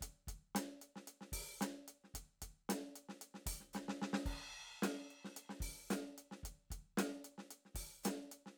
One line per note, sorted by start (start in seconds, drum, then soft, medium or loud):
0.01 kick soft
0.01 closed hi-hat medium
0.27 kick soft
0.27 closed hi-hat medium
0.55 snare medium
0.55 closed hi-hat loud
0.82 closed hi-hat medium
0.96 snare soft
1.07 closed hi-hat medium
1.21 snare soft
1.32 kick soft
1.32 open hi-hat loud
1.61 snare medium
1.61 closed hi-hat medium
1.61 hi-hat pedal medium
1.88 closed hi-hat medium
2.04 snare soft
2.14 kick soft
2.14 closed hi-hat medium
2.42 kick soft
2.42 closed hi-hat medium
2.69 snare medium
2.69 closed hi-hat loud
2.96 closed hi-hat medium
3.09 snare soft
3.21 closed hi-hat medium
3.34 snare soft
3.46 kick soft
3.46 open hi-hat loud
3.60 snare soft
3.73 snare medium
3.73 hi-hat pedal medium
3.89 snare medium
4.02 snare medium
4.13 snare medium
4.26 kick soft
4.26 crash medium
4.82 snare medium
4.82 closed hi-hat medium
5.11 closed hi-hat soft
5.25 snare soft
5.37 closed hi-hat medium
5.50 snare soft
5.60 kick soft
5.60 open hi-hat medium
5.90 snare medium
5.90 hi-hat pedal medium
5.90 open hi-hat medium
6.18 closed hi-hat medium
6.31 snare soft
6.43 kick soft
6.43 closed hi-hat medium
6.71 kick soft
6.71 closed hi-hat medium
6.98 snare medium
6.98 closed hi-hat medium
7.25 closed hi-hat medium
7.38 snare soft
7.51 closed hi-hat medium
7.65 snare soft
7.75 kick soft
7.75 open hi-hat medium
8.04 snare medium
8.04 closed hi-hat loud
8.04 hi-hat pedal medium
8.32 closed hi-hat medium
8.46 snare soft